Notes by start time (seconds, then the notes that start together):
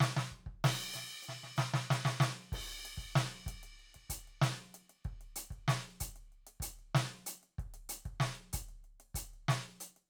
0.01 snare
0.17 snare
0.32 kick
0.47 kick
0.65 snare, crash
0.93 snare, hi-hat pedal
1.23 hi-hat pedal
1.29 snare
1.44 snare
1.57 snare, hi-hat pedal
1.74 snare
1.91 snare
2.06 snare
2.11 hi-hat pedal
2.21 snare
2.53 kick, crash
2.68 closed hi-hat
2.86 closed hi-hat
2.98 kick, closed hi-hat
3.16 snare
3.32 closed hi-hat
3.47 kick, closed hi-hat
3.64 closed hi-hat
3.80 closed hi-hat
3.95 kick, closed hi-hat
4.10 closed hi-hat, kick
4.28 closed hi-hat
4.42 snare
4.57 closed hi-hat
4.75 closed hi-hat
4.90 closed hi-hat
5.05 kick, closed hi-hat
5.21 closed hi-hat
5.36 closed hi-hat
5.51 kick, closed hi-hat
5.69 snare
5.83 closed hi-hat
6.01 closed hi-hat, kick
6.16 closed hi-hat
6.33 closed hi-hat
6.47 closed hi-hat
6.61 closed hi-hat, kick
6.79 closed hi-hat
6.95 snare
7.09 closed hi-hat
7.27 closed hi-hat
7.44 closed hi-hat
7.59 kick, closed hi-hat
7.74 closed hi-hat
7.90 closed hi-hat
8.06 kick, closed hi-hat
8.21 snare
8.36 closed hi-hat
8.54 closed hi-hat, kick
8.69 closed hi-hat
8.85 open hi-hat
9.01 closed hi-hat
9.15 closed hi-hat, kick
9.34 closed hi-hat
9.49 snare
9.65 closed hi-hat
9.81 closed hi-hat
9.97 closed hi-hat